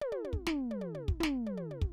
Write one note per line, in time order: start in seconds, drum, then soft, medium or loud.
0.01 high tom loud
0.12 high tom medium
0.25 high tom medium
0.33 kick soft
0.47 snare loud
0.47 floor tom loud
0.71 high tom medium
0.81 high tom medium
0.95 high tom medium
1.08 kick medium
1.20 snare loud
1.20 floor tom loud
1.47 high tom medium
1.57 high tom medium
1.71 high tom medium
1.82 kick medium